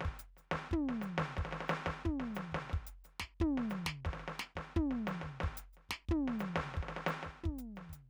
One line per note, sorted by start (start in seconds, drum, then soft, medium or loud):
0.01 snare medium
0.05 kick soft
0.19 closed hi-hat medium
0.37 snare soft
0.37 hi-hat pedal soft
0.51 kick soft
0.51 snare medium
0.71 kick soft
0.71 floor tom medium
0.89 snare soft
1.02 snare soft
1.02 hi-hat pedal medium
1.18 kick soft
1.18 snare medium
1.37 kick soft
1.37 snare soft
1.45 snare soft
1.51 snare soft
1.61 snare soft
1.68 snare medium
1.68 hi-hat pedal soft
1.86 kick soft
1.86 snare medium
2.04 kick soft
2.04 floor tom medium
2.20 snare soft
2.31 snare soft
2.31 hi-hat pedal medium
2.37 snare soft
2.52 kick soft
2.52 snare medium
2.70 kick soft
2.70 snare soft
2.87 closed hi-hat medium
3.04 snare soft
3.04 hi-hat pedal medium
3.20 kick soft
3.20 snare medium
3.40 kick soft
3.40 floor tom loud
3.57 snare soft
3.70 snare soft
3.70 hi-hat pedal medium
3.85 kick soft
3.85 snare medium
4.05 kick soft
4.05 snare soft
4.13 snare soft
4.20 snare soft
4.28 snare soft
4.39 snare medium
4.39 hi-hat pedal soft
4.55 kick soft
4.55 snare soft
4.76 kick soft
4.76 floor tom medium
4.91 snare soft
5.07 snare medium
5.07 hi-hat pedal soft
5.21 kick soft
5.21 snare soft
5.40 kick soft
5.40 snare medium
5.57 closed hi-hat medium
5.73 hi-hat pedal soft
5.77 snare soft
5.89 kick soft
5.89 snare medium
6.09 kick soft
6.09 floor tom loud
6.28 snare soft
6.39 snare soft
6.39 hi-hat pedal medium
6.56 kick soft
6.56 snare medium
6.74 kick soft
6.74 snare soft
6.83 snare soft
6.88 snare soft
6.96 snare soft
7.06 snare medium
7.06 hi-hat pedal medium
7.23 kick soft
7.23 snare soft
7.43 kick soft
7.43 floor tom medium
7.58 closed hi-hat medium
7.75 snare soft
7.75 hi-hat pedal soft
7.89 closed hi-hat medium
7.89 kick soft